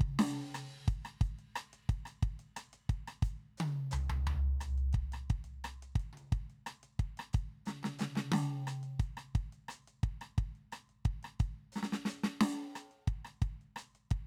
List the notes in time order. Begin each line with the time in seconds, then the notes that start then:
0.01 kick
0.19 snare, crash
0.54 closed hi-hat, cross-stick
0.71 closed hi-hat
0.88 closed hi-hat, kick
1.05 cross-stick, closed hi-hat
1.21 closed hi-hat, kick
1.39 closed hi-hat
1.56 cross-stick, closed hi-hat
1.73 closed hi-hat
1.89 kick, closed hi-hat
2.06 cross-stick, closed hi-hat
2.23 kick, closed hi-hat
2.39 closed hi-hat
2.56 cross-stick, closed hi-hat
2.73 closed hi-hat
2.89 kick, closed hi-hat
3.08 cross-stick, closed hi-hat
3.22 closed hi-hat, kick
3.57 hi-hat pedal, high tom
3.91 floor tom, hi-hat pedal
4.10 floor tom
4.27 floor tom
4.61 cross-stick, closed hi-hat
4.78 closed hi-hat
4.93 kick, closed hi-hat
5.12 cross-stick, closed hi-hat
5.30 kick, closed hi-hat
5.44 closed hi-hat
5.64 cross-stick, closed hi-hat
5.82 closed hi-hat
5.95 kick
6.00 closed hi-hat
6.13 high tom
6.17 closed hi-hat
6.32 kick, closed hi-hat
6.50 closed hi-hat
6.66 cross-stick, closed hi-hat
6.83 closed hi-hat
6.99 kick, closed hi-hat
7.17 cross-stick, closed hi-hat
7.33 closed hi-hat, kick
7.66 snare, hi-hat pedal, high tom
7.83 snare, high tom
7.99 snare, hi-hat pedal, high tom
8.15 snare, high tom
8.32 snare, high tom
8.67 closed hi-hat, cross-stick
8.83 closed hi-hat
9.00 closed hi-hat, kick
9.17 cross-stick, closed hi-hat
9.35 kick, closed hi-hat
9.52 closed hi-hat
9.68 closed hi-hat, cross-stick
9.88 closed hi-hat
10.03 kick, closed hi-hat
10.21 cross-stick, closed hi-hat
10.38 kick, closed hi-hat
10.55 closed hi-hat
10.72 closed hi-hat, cross-stick
10.89 closed hi-hat
11.05 kick, closed hi-hat
11.23 cross-stick, closed hi-hat
11.40 closed hi-hat, kick
11.72 snare, hi-hat pedal
11.83 snare
11.92 snare
12.05 snare, hi-hat pedal
12.24 snare
12.41 snare
12.75 closed hi-hat, cross-stick
12.91 closed hi-hat
13.07 kick, closed hi-hat
13.25 cross-stick, closed hi-hat
13.42 kick, closed hi-hat
13.61 closed hi-hat
13.76 closed hi-hat, cross-stick
13.95 closed hi-hat
14.11 kick, closed hi-hat